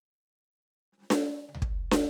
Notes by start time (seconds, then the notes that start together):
0.92 snare
0.98 snare
1.00 snare
1.02 snare
1.10 snare
1.49 high tom
1.55 floor tom
1.62 kick
1.92 snare